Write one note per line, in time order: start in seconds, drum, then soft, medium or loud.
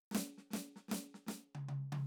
0.11 snare medium
0.15 snare loud
0.37 snare soft
0.50 snare soft
0.53 snare medium
0.76 snare soft
0.88 snare soft
0.91 snare medium
1.14 snare soft
1.26 snare soft
1.28 snare medium
1.55 high tom medium
1.68 high tom medium
1.92 high tom loud